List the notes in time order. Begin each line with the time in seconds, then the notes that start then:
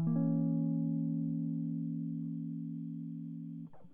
0.00 E3
0.07 A#3
0.16 C#4